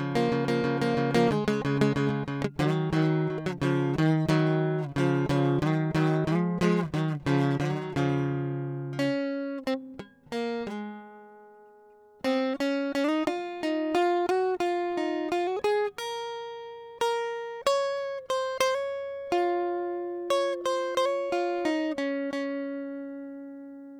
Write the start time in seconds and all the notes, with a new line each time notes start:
0.00 C#3 F3
0.17 F3 A#3
0.33 C#3 F3
0.50 F3 A#3
0.66 C#3 F3
0.83 F3 A#3
0.99 C#3 F3
1.16 F3 A#3
1.32 D#3 G#3
1.49 C#3 G#3
1.66 C#3 G#3
1.83 C#3 G#3
1.98 C#3 G#3
2.11 C#3
2.29 C#3
2.44 G#3
2.60 D#3 F#3
2.94 D#3 F#3
3.30 D#3
3.63 C#3 F3
3.71 C#3
4.00 D#3 F#3
4.30 D#3 F#3
4.85 C#3
4.97 C#3 F3
5.31 C#3 F3
5.64 D#3 F#3
5.96 D#3 F#3
6.29 F3 G#3
6.62 F3 G#3
6.95 D#3 F#3
7.28 C#3 F3
7.61 D3 F#3
7.74 D#3
7.97 C#3 F3
9.00 C#4
9.68 C4
10.33 A#3
10.68 G#3
12.26 C4
12.62 C#4
12.97 C#4
13.10 D#4
13.29 D#4 F4
13.64 D#4
13.96 F4
14.31 F#4
14.62 F4
14.99 D#4
15.33 F4
15.48 F#4
15.66 G#4
15.99 A#4
17.02 A#4
17.68 C#5
18.31 C5
18.62 C5
18.76 C#5
19.33 F4
20.32 C#5
20.67 C5
20.99 C5
21.11 C#5
21.34 F4
21.66 D#4
21.99 C#4
22.35 C#4